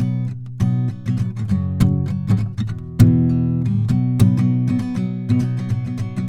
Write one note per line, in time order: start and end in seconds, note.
0.00 0.29 B2
0.00 0.28 F#3
0.00 0.08 B3
0.00 0.30 D#4
0.09 0.32 B3
0.29 0.61 B2
0.29 0.39 G#3
0.62 0.93 B2
0.62 0.90 F#3
0.62 0.90 B3
0.62 0.93 D#4
0.90 1.07 F#3
0.90 1.07 B3
1.08 1.20 B2
1.08 1.20 F#3
1.08 1.34 C4
1.20 1.28 B2
1.20 1.34 F#3
1.28 1.39 A2
1.39 1.51 B2
1.51 1.81 F#2
1.51 1.83 C#3
1.51 1.81 F#3
1.82 2.40 F#2
1.82 2.10 C#3
1.82 2.09 F#3
2.10 2.30 C#3
2.10 2.30 F#3
2.30 2.37 C#3
2.30 2.40 F#3
2.39 2.50 C#3
2.39 2.58 F#3
2.62 2.68 E2
2.69 3.01 E2
2.69 2.96 B2
3.01 3.90 E2
3.01 3.67 B2
3.01 3.31 E3
3.32 3.66 E3
3.67 3.85 A2
3.67 3.89 D3
3.90 4.05 F2
3.90 4.21 B2
3.90 4.19 F#3
4.21 4.41 B2
4.21 4.39 F#3
4.21 4.39 B3
4.21 4.82 D#4
4.39 4.69 B2
4.39 4.81 F#3
4.39 4.69 B3
4.69 4.80 B2
4.69 4.81 B3
4.81 4.88 B2
4.81 4.99 F#3
4.81 4.96 B3
4.81 5.43 D#4
4.97 5.31 B2
4.97 5.42 F#3
4.97 5.28 B3
5.31 5.60 B2
5.31 5.40 B3
5.42 5.59 F#3
5.42 5.59 B3
5.42 5.70 D#4
5.59 5.71 B2
5.59 5.72 F#3
5.59 5.71 B3
5.71 5.88 B2
5.71 5.88 B3
5.71 6.01 D#4
5.87 5.99 B2
5.87 5.98 F#3
5.87 6.00 B3
5.99 6.08 B2
5.99 6.18 F#3
5.99 6.29 B3
6.18 6.29 B2
6.18 6.29 F#3